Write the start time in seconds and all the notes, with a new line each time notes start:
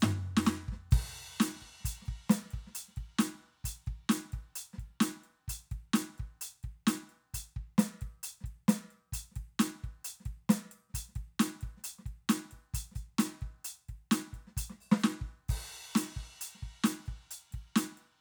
0.01 snare, floor tom, hi-hat pedal
0.37 snare
0.45 snare, hi-hat pedal
0.69 kick, snare
0.92 kick, hi-hat pedal, crash
1.41 closed hi-hat, snare
1.62 kick, closed hi-hat
1.81 snare
1.85 closed hi-hat, kick
2.02 closed hi-hat, snare
2.09 kick
2.30 closed hi-hat, snare
2.51 kick, closed hi-hat
2.68 snare
2.76 closed hi-hat
2.89 snare
2.97 kick, closed hi-hat
3.19 closed hi-hat, snare
3.65 closed hi-hat, kick
3.87 kick, closed hi-hat
4.10 closed hi-hat, snare
4.33 kick, closed hi-hat
4.56 closed hi-hat
4.74 snare
4.79 kick, closed hi-hat
5.01 closed hi-hat, snare
5.24 closed hi-hat
5.49 closed hi-hat, kick
5.72 kick, closed hi-hat
5.94 closed hi-hat, snare
6.19 kick, closed hi-hat
6.42 closed hi-hat
6.64 kick, closed hi-hat
6.88 closed hi-hat, snare
7.10 closed hi-hat
7.34 closed hi-hat, kick
7.57 kick
7.79 closed hi-hat, snare
8.02 kick, closed hi-hat
8.24 closed hi-hat
8.41 kick, snare
8.47 closed hi-hat
8.69 closed hi-hat, snare
8.91 closed hi-hat
9.13 closed hi-hat, kick
9.32 snare
9.36 kick, closed hi-hat
9.60 closed hi-hat, snare
9.84 kick, closed hi-hat
10.05 closed hi-hat
10.21 snare
10.26 kick, closed hi-hat
10.50 closed hi-hat, snare
10.72 closed hi-hat
10.90 snare
10.95 closed hi-hat, kick
11.09 snare
11.16 kick, closed hi-hat
11.40 closed hi-hat, snare
11.62 kick, closed hi-hat
11.78 snare
11.85 closed hi-hat
11.99 snare
12.06 kick, closed hi-hat
12.30 closed hi-hat, snare
12.52 kick, closed hi-hat
12.75 closed hi-hat, kick
12.92 closed hi-hat, snare
12.96 kick
13.19 closed hi-hat, snare
13.42 kick, closed hi-hat
13.65 closed hi-hat
13.89 kick, closed hi-hat
14.12 closed hi-hat, snare
14.34 kick, closed hi-hat
14.48 snare
14.57 open hi-hat, kick
14.70 snare
14.81 open hi-hat
14.92 snare
15.00 hi-hat pedal
15.04 snare
15.22 kick
15.49 kick, hi-hat pedal, crash
15.96 closed hi-hat, snare
16.17 kick
16.42 closed hi-hat
16.55 snare
16.63 kick, closed hi-hat
16.85 closed hi-hat, snare
17.06 closed hi-hat, kick
17.32 closed hi-hat
17.52 kick, snare, closed hi-hat
17.77 closed hi-hat, snare
17.98 closed hi-hat